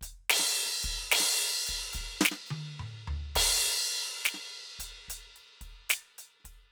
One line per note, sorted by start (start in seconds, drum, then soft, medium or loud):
0.01 closed hi-hat medium
0.01 kick soft
0.29 snare loud
0.29 crash loud
0.39 snare soft
0.55 closed hi-hat soft
0.66 snare soft
0.82 kick soft
0.82 snare soft
0.82 closed hi-hat medium
0.90 kick soft
1.11 snare loud
1.11 crash loud
1.20 snare soft
1.37 closed hi-hat soft
1.49 snare soft
1.66 closed hi-hat medium
1.66 kick soft
1.93 closed hi-hat medium
1.93 kick soft
1.93 snare soft
2.01 kick soft
2.20 snare loud
2.25 snare loud
2.31 snare medium
2.46 hi-hat pedal soft
2.50 high tom loud
2.79 mid tom medium
3.07 floor tom medium
3.35 kick soft
3.35 crash loud
3.42 kick soft
4.23 closed hi-hat medium
4.23 snare loud
4.23 hi-hat pedal soft
4.34 snare soft
4.79 closed hi-hat medium
4.79 kick soft
5.08 closed hi-hat medium
5.08 kick soft
5.36 closed hi-hat soft
5.61 kick soft
5.61 closed hi-hat soft
5.89 closed hi-hat loud
5.89 snare loud
6.18 closed hi-hat medium
6.40 snare soft
6.44 kick soft
6.44 closed hi-hat soft